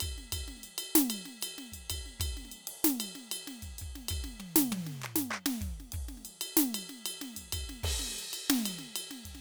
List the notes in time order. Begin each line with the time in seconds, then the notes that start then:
0.01 kick, ride bell
0.07 hi-hat pedal
0.12 kick
0.18 snare
0.33 kick, ride bell
0.38 kick
0.48 snare
0.57 snare
0.64 ride bell
0.79 ride bell
0.96 snare, hi-hat pedal
1.11 ride bell
1.26 snare
1.42 hi-hat pedal, ride bell
1.59 snare
1.73 kick, ride bell
1.90 kick, ride bell
1.96 kick
2.06 snare
2.20 kick, ride bell
2.27 kick
2.38 snare
2.46 snare
2.52 snare, ride bell
2.58 snare
2.68 ride
2.85 snare
3.01 ride bell
3.16 snare
3.32 hi-hat pedal, ride bell
3.48 snare
3.63 kick, snare, ride bell
3.79 kick, ride bell
3.90 kick
3.96 snare
4.09 kick, ride bell
4.18 kick
4.25 snare
4.40 high tom
4.56 snare
4.70 hi-hat pedal, high tom
4.87 snare
5.02 percussion
5.16 snare
5.31 percussion
5.46 snare
5.59 kick, hi-hat pedal, ride
5.68 kick
5.80 snare
5.93 kick, ride
6.02 kick
6.09 snare
6.18 snare
6.25 ride bell
6.42 ride bell
6.57 snare
6.75 ride bell
6.90 snare
7.06 hi-hat pedal, ride bell
7.22 snare
7.35 kick, snare, ride bell
7.53 kick, ride bell
7.59 kick
7.70 snare
7.84 kick, crash
7.91 kick
8.00 snare
8.09 snare
8.19 ride bell
8.34 ride bell
8.50 snare
8.59 snare
8.66 ride bell
8.79 snare
8.96 hi-hat pedal, ride bell
9.11 snare
9.25 kick, ride
9.35 snare